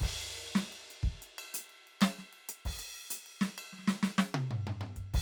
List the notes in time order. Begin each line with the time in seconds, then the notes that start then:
0.01 kick, ride
0.07 hi-hat pedal
0.21 closed hi-hat
0.38 ride
0.55 snare
0.72 ride bell
0.90 closed hi-hat
1.03 kick, ride
1.22 closed hi-hat
1.38 ride bell
1.54 closed hi-hat
1.69 ride
1.87 ride
2.01 snare, ride bell
2.18 snare
2.33 ride
2.49 closed hi-hat
2.65 kick, crash
2.79 closed hi-hat
2.94 ride bell
3.10 closed hi-hat
3.26 ride
3.41 snare
3.58 ride bell
3.73 snare
3.78 snare
3.83 snare
3.88 snare
4.03 snare
4.18 snare
4.34 high tom
4.51 mid tom
4.67 mid tom
4.81 mid tom
4.96 kick, closed hi-hat
5.14 kick, crash